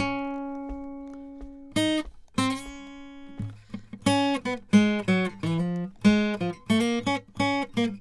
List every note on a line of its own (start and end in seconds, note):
0.00 1.74 C#4
1.76 2.05 D#4
2.38 2.57 C4
4.07 4.41 C#4
4.46 4.59 B3
4.73 5.04 G#3
5.08 5.30 F#3
5.44 5.60 E3
5.61 5.90 F3
6.05 6.38 G#3
6.41 6.54 F3
6.70 6.80 A3
6.80 7.02 A#3
7.07 7.22 C#4
7.40 7.67 C#4
7.78 7.90 A#3